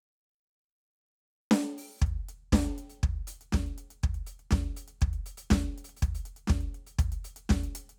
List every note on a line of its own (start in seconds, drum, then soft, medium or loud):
1.51 snare loud
1.66 snare soft
1.70 snare soft
1.78 open hi-hat medium
1.98 kick loud
1.98 hi-hat pedal soft
2.06 closed hi-hat soft
2.29 closed hi-hat medium
2.52 kick loud
2.52 snare loud
2.78 closed hi-hat medium
2.89 closed hi-hat soft
3.03 kick loud
3.03 closed hi-hat soft
3.16 closed hi-hat soft
3.27 closed hi-hat loud
3.41 closed hi-hat medium
3.52 kick loud
3.52 snare medium
3.66 closed hi-hat soft
3.78 kick soft
3.78 closed hi-hat medium
3.90 closed hi-hat medium
4.03 kick loud
4.03 closed hi-hat soft
4.14 closed hi-hat soft
4.24 closed hi-hat medium
4.24 kick soft
4.39 closed hi-hat soft
4.51 kick loud
4.51 snare medium
4.64 closed hi-hat soft
4.76 closed hi-hat medium
4.88 closed hi-hat medium
5.01 kick loud
5.01 closed hi-hat soft
5.13 closed hi-hat soft
5.26 closed hi-hat medium
5.37 closed hi-hat medium
5.50 kick loud
5.50 snare loud
5.64 closed hi-hat soft
5.78 closed hi-hat medium
5.84 closed hi-hat medium
5.89 closed hi-hat soft
5.97 closed hi-hat medium
6.02 kick loud
6.02 closed hi-hat medium
6.15 closed hi-hat medium
6.25 closed hi-hat medium
6.36 closed hi-hat medium
6.47 kick loud
6.47 snare medium
6.61 closed hi-hat soft
6.74 closed hi-hat soft
6.87 closed hi-hat medium
6.99 kick loud
6.99 closed hi-hat medium
7.12 closed hi-hat medium
7.23 closed hi-hat medium
7.23 kick soft
7.36 closed hi-hat medium
7.49 kick loud
7.49 snare loud
7.63 closed hi-hat medium
7.72 kick soft
7.72 closed hi-hat loud
7.89 closed hi-hat medium